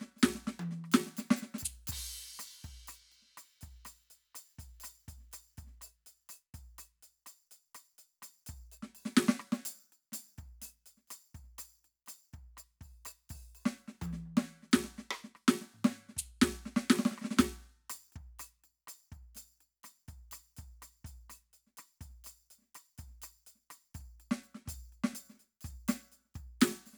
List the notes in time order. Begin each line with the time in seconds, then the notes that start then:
0.02 snare
0.17 snare, percussion
0.23 kick, snare
0.35 snare
0.48 snare
0.60 high tom, percussion
0.72 snare
0.85 cross-stick
0.92 snare, percussion
1.07 snare
1.17 snare, percussion
1.31 snare
1.37 percussion
1.43 snare
1.55 snare
1.59 percussion
1.63 kick, floor tom
1.88 kick, percussion
1.92 kick, crash
1.99 kick
2.39 cross-stick, snare, percussion
2.65 kick, percussion
2.88 cross-stick, percussion
3.12 percussion
3.22 snare
3.38 cross-stick, snare, percussion
3.62 kick, percussion
3.86 cross-stick, snare, percussion
4.11 percussion
4.35 cross-stick, percussion
4.59 kick, percussion
4.81 cross-stick, percussion
4.85 percussion
5.09 kick, percussion
5.18 snare
5.20 snare
5.32 cross-stick, percussion
5.58 kick, percussion
5.65 snare
5.67 snare
5.82 cross-stick, percussion
5.84 percussion
6.07 percussion
6.30 cross-stick, percussion
6.55 kick, percussion
6.79 cross-stick, percussion
7.03 percussion
7.27 cross-stick, percussion
7.52 percussion
7.75 cross-stick, snare, percussion
7.99 percussion
8.22 cross-stick, snare, percussion
8.47 kick, percussion
8.72 percussion
8.74 percussion
8.83 snare
8.95 percussion
9.06 snare
9.17 snare
9.29 snare
9.40 cross-stick
9.53 snare, percussion
9.66 percussion
9.93 percussion
10.13 snare, percussion
10.39 kick, percussion
10.45 snare
10.62 snare, percussion
10.86 percussion
10.98 snare
11.08 cross-stick, snare, percussion
11.11 percussion
11.35 kick, percussion
11.44 snare
11.59 cross-stick, percussion
11.85 percussion
12.07 cross-stick, snare, percussion
12.09 percussion
12.34 kick, percussion
12.58 cross-stick, percussion
12.81 kick, percussion
13.06 cross-stick, percussion
13.09 percussion
13.30 kick, snare, percussion
13.36 kick
13.55 percussion
13.66 snare
13.78 percussion
13.88 snare
14.02 kick, high tom, percussion
14.08 kick
14.12 kick, snare
14.26 high tom
14.38 snare
14.63 snare
14.72 snare, percussion
14.76 kick
14.84 snare
14.99 snare
15.11 high tom, percussion
15.24 snare
15.36 cross-stick
15.49 snare
15.62 snare
15.74 floor tom
15.85 snare
16.09 snare
16.17 kick, floor tom
16.42 kick, snare
16.49 kick, snare
16.66 snare
16.77 snare
16.91 snare
16.96 cross-stick, snare
17.06 snare
17.12 snare
17.18 cross-stick, snare
17.25 snare
17.31 snare
17.37 snare
17.39 kick, snare, percussion
17.90 cross-stick, percussion
18.13 kick, percussion
18.40 cross-stick, snare, percussion
18.64 percussion
18.88 cross-stick, snare, percussion
19.12 kick, percussion
19.35 snare, percussion
19.37 percussion
19.61 percussion
19.84 cross-stick, snare, percussion
20.09 kick, percussion
20.32 cross-stick, snare, percussion
20.34 percussion
20.57 kick, percussion
20.82 cross-stick, snare, percussion
21.05 kick, percussion
21.30 cross-stick, snare, percussion
21.54 percussion
21.67 snare
21.78 cross-stick, snare, percussion
22.01 kick, percussion
22.10 snare
22.25 cross-stick, percussion
22.27 percussion
22.51 percussion
22.59 snare
22.62 snare
22.75 cross-stick, percussion
22.98 kick, percussion
23.07 snare
23.10 snare
23.22 cross-stick, percussion
23.47 percussion
23.56 snare
23.70 cross-stick, snare, percussion
23.95 kick, percussion
24.01 kick
24.20 percussion
24.32 snare
24.44 percussion
24.55 snare
24.66 kick, snare, percussion
24.74 kick
24.93 percussion
25.04 snare
25.14 snare, percussion
25.30 snare
25.34 snare
25.40 snare, percussion
25.61 kick, snare, percussion
25.66 percussion
25.71 kick
25.74 kick
25.89 snare, percussion
26.12 snare, percussion
26.17 snare
26.19 snare
26.26 snare
26.35 kick, percussion
26.38 percussion
26.61 snare, percussion
26.71 snare
26.86 snare, percussion
26.94 snare